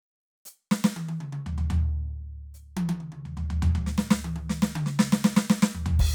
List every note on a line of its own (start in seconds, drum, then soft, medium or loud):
0.46 hi-hat pedal medium
0.72 snare loud
0.85 snare loud
0.97 high tom medium
1.09 high tom medium
1.21 mid tom medium
1.33 mid tom medium
1.47 floor tom medium
1.58 floor tom medium
1.71 floor tom loud
2.55 hi-hat pedal soft
2.77 high tom loud
2.89 high tom loud
3.01 mid tom medium
3.12 mid tom medium
3.26 floor tom medium
3.38 floor tom medium
3.51 floor tom medium
3.63 floor tom loud
3.76 floor tom loud
3.87 snare medium
3.98 snare loud
4.11 snare loud
4.25 high tom medium
4.36 high tom medium
4.50 snare medium
4.63 snare loud
4.76 mid tom loud
4.87 snare medium
5.00 snare loud
5.13 snare loud
5.25 snare loud
5.37 snare loud
5.50 snare loud
5.63 snare loud
5.75 floor tom medium
5.86 floor tom loud
6.00 kick medium
6.00 crash loud